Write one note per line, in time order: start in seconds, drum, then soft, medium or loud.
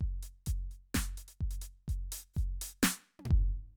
0.01 kick soft
0.23 closed hi-hat medium
0.46 kick soft
0.46 closed hi-hat loud
0.71 closed hi-hat soft
0.95 kick soft
0.95 snare medium
0.95 closed hi-hat medium
1.18 closed hi-hat medium
1.28 closed hi-hat medium
1.41 kick soft
1.51 closed hi-hat medium
1.62 closed hi-hat medium
1.88 kick soft
1.88 closed hi-hat medium
2.12 open hi-hat loud
2.34 kick medium
2.34 hi-hat pedal soft
2.38 closed hi-hat soft
2.62 open hi-hat loud
2.83 snare loud
2.83 hi-hat pedal medium
3.19 high tom soft
3.25 floor tom medium
3.31 kick medium